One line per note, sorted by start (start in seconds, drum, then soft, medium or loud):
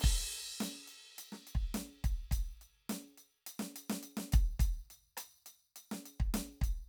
0.01 kick medium
0.01 crash loud
0.33 percussion soft
0.61 snare medium
0.61 percussion medium
0.88 closed hi-hat medium
1.19 closed hi-hat loud
1.33 snare medium
1.48 percussion medium
1.56 kick medium
1.75 snare medium
1.75 closed hi-hat medium
2.05 kick medium
2.05 closed hi-hat medium
2.32 kick medium
2.32 closed hi-hat loud
2.62 percussion soft
2.90 snare medium
2.90 percussion loud
3.18 percussion medium
3.47 closed hi-hat loud
3.60 snare medium
3.77 closed hi-hat loud
3.90 snare medium
4.04 closed hi-hat medium
4.18 snare medium
4.33 kick loud
4.33 closed hi-hat loud
4.60 kick medium
4.60 closed hi-hat loud
4.91 percussion medium
5.18 cross-stick medium
5.18 closed hi-hat loud
5.47 closed hi-hat medium
5.77 closed hi-hat medium
5.92 snare medium
6.06 closed hi-hat medium
6.21 kick medium
6.35 snare loud
6.35 closed hi-hat loud
6.62 kick medium
6.62 closed hi-hat medium